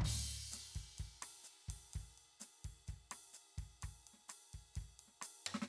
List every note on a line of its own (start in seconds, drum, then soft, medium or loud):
0.01 kick soft
0.01 floor tom soft
0.01 crash loud
0.52 snare soft
0.52 hi-hat pedal medium
0.52 ride medium
0.75 kick soft
0.75 ride soft
0.81 kick soft
0.98 kick soft
0.98 hi-hat pedal soft
0.98 ride medium
1.05 kick soft
1.22 cross-stick soft
1.22 snare soft
1.22 ride medium
1.44 hi-hat pedal medium
1.69 kick soft
1.69 ride medium
1.93 kick soft
1.93 hi-hat pedal soft
1.93 ride medium
2.01 kick soft
2.18 ride soft
2.40 snare soft
2.40 hi-hat pedal medium
2.40 ride medium
2.65 kick soft
2.65 ride soft
2.87 kick soft
2.87 hi-hat pedal soft
2.87 ride soft
2.94 kick soft
3.12 cross-stick medium
3.12 snare soft
3.12 ride medium
3.34 hi-hat pedal medium
3.34 ride soft
3.58 kick soft
3.58 ride soft
3.63 kick soft
3.82 kick soft
3.82 cross-stick soft
3.82 snare soft
3.82 hi-hat pedal soft
3.82 ride medium
3.89 kick soft
4.07 ride soft
4.14 snare soft
4.19 snare soft
4.29 cross-stick soft
4.29 snare soft
4.29 hi-hat pedal medium
4.29 ride medium
4.54 kick soft
4.54 ride soft
4.74 kick soft
4.74 hi-hat pedal soft
4.74 ride soft
4.82 kick soft
5.00 ride soft
5.08 snare soft
5.22 cross-stick medium
5.22 snare soft
5.22 hi-hat pedal medium
5.22 ride medium
5.47 floor tom loud
5.55 snare soft
5.62 snare soft